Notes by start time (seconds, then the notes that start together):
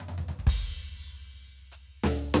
0.00 mid tom
0.09 mid tom
0.18 floor tom
0.29 floor tom
0.39 kick, floor tom
0.47 kick, crash
1.72 hi-hat pedal
2.04 snare, floor tom
2.34 snare, floor tom